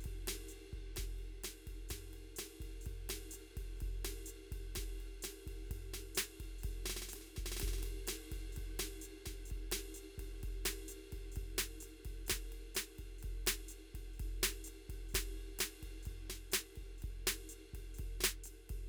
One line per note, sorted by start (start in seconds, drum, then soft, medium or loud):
0.01 hi-hat pedal soft
0.01 ride soft
0.06 kick soft
0.12 kick soft
0.28 snare medium
0.28 ride medium
0.49 hi-hat pedal medium
0.49 ride soft
0.73 kick soft
0.73 ride soft
0.79 kick soft
0.96 kick soft
0.96 snare medium
0.96 hi-hat pedal soft
0.96 ride medium
1.04 kick soft
1.19 ride soft
1.44 snare medium
1.44 hi-hat pedal medium
1.44 ride medium
1.67 kick soft
1.67 ride soft
1.72 kick soft
1.89 kick soft
1.89 snare medium
1.89 hi-hat pedal medium
1.89 ride medium
1.97 kick soft
2.14 ride soft
2.37 snare medium
2.37 hi-hat pedal medium
2.37 ride medium
2.61 kick soft
2.61 ride soft
2.66 kick soft
2.81 hi-hat pedal soft
2.86 kick soft
2.86 ride soft
2.93 kick soft
3.10 snare medium
3.10 ride medium
3.31 hi-hat pedal medium
3.31 ride soft
3.57 kick soft
3.57 ride soft
3.63 kick soft
3.76 hi-hat pedal soft
3.81 kick soft
3.81 ride soft
3.88 kick soft
4.05 snare medium
4.05 ride medium
4.26 hi-hat pedal medium
4.26 ride soft
4.52 kick soft
4.52 ride soft
4.58 kick soft
4.76 kick soft
4.76 snare medium
4.76 ride medium
4.83 kick soft
5.01 ride soft
5.23 snare medium
5.23 hi-hat pedal medium
5.23 ride medium
5.47 kick soft
5.47 ride soft
5.52 kick soft
5.66 hi-hat pedal soft
5.71 kick soft
5.71 ride soft
5.77 kick soft
5.94 snare medium
5.94 ride medium
6.15 snare medium
6.15 hi-hat pedal medium
6.15 ride medium
6.40 kick soft
6.40 ride soft
6.46 kick soft
6.59 hi-hat pedal soft
6.64 kick soft
6.64 ride medium
6.71 kick soft
6.86 snare medium
6.90 snare medium
6.97 snare medium
7.02 snare soft
7.09 snare soft
7.09 hi-hat pedal medium
7.14 snare soft
7.14 ride medium
7.21 snare soft
7.27 snare soft
7.37 kick soft
7.37 snare soft
7.44 kick soft
7.44 snare medium
7.52 snare medium
7.57 snare medium
7.57 ride medium
7.62 kick soft
7.62 snare soft
7.68 kick soft
7.68 snare soft
7.74 snare soft
7.79 snare soft
7.83 snare soft
7.83 ride medium
7.86 snare soft
8.07 snare medium
8.07 hi-hat pedal medium
8.07 ride medium
8.32 kick soft
8.32 snare soft
8.32 ride soft
8.38 kick soft
8.38 snare soft
8.53 hi-hat pedal soft
8.57 kick soft
8.57 ride soft
8.64 kick soft
8.80 snare medium
8.80 ride medium
9.02 hi-hat pedal medium
9.02 ride soft
9.26 kick soft
9.26 snare soft
9.26 ride soft
9.33 kick soft
9.46 hi-hat pedal medium
9.51 kick soft
9.51 ride soft
9.57 kick soft
9.72 snare medium
9.72 ride medium
9.95 hi-hat pedal medium
9.95 ride soft
10.18 kick soft
10.18 ride soft
10.24 kick soft
10.38 hi-hat pedal soft
10.44 kick soft
10.44 ride soft
10.50 kick soft
10.66 snare medium
10.66 ride medium
10.88 hi-hat pedal medium
10.88 ride soft
11.13 kick soft
11.13 ride soft
11.19 kick soft
11.32 hi-hat pedal soft
11.36 kick soft
11.36 ride soft
11.43 kick soft
11.59 snare medium
11.59 ride medium
11.81 hi-hat pedal medium
11.81 ride soft
11.87 snare soft
12.05 kick soft
12.05 ride soft
12.11 kick soft
12.27 snare medium
12.27 hi-hat pedal soft
12.27 ride medium
12.32 kick soft
12.37 kick soft
12.53 ride soft
12.75 snare medium
12.75 hi-hat pedal medium
12.75 ride medium
12.99 kick soft
12.99 ride soft
13.04 kick soft
13.19 hi-hat pedal soft
13.23 kick soft
13.23 ride soft
13.30 kick soft
13.47 snare medium
13.47 ride medium
13.69 hi-hat pedal medium
13.69 ride soft
13.95 kick soft
13.95 ride soft
14.00 kick soft
14.14 hi-hat pedal soft
14.20 kick soft
14.20 ride soft
14.26 kick soft
14.43 snare medium
14.43 ride medium
14.49 snare soft
14.65 hi-hat pedal medium
14.65 ride soft
14.90 kick soft
14.90 ride soft
14.95 kick soft
15.09 hi-hat pedal soft
15.15 kick soft
15.15 snare medium
15.15 ride medium
15.20 kick soft
15.59 snare medium
15.59 hi-hat pedal medium
15.59 ride medium
15.83 kick soft
15.83 snare soft
15.83 ride soft
15.88 kick soft
16.03 hi-hat pedal soft
16.03 ride soft
16.07 kick soft
16.13 kick soft
16.30 snare medium
16.30 ride soft
16.52 snare medium
16.52 hi-hat pedal medium
16.52 ride medium
16.76 kick soft
16.76 ride soft
16.83 kick soft
16.83 snare soft
16.89 snare soft
16.99 hi-hat pedal soft
17.03 kick soft
17.03 ride soft
17.10 kick soft
17.27 snare medium
17.27 ride medium
17.49 hi-hat pedal medium
17.49 ride soft
17.74 kick soft
17.74 ride soft
17.79 kick soft
17.95 hi-hat pedal soft
17.99 kick soft
17.99 ride soft
18.06 kick soft
18.21 snare medium
18.24 snare loud
18.44 hi-hat pedal medium
18.44 ride soft
18.70 kick soft
18.70 ride soft
18.76 kick soft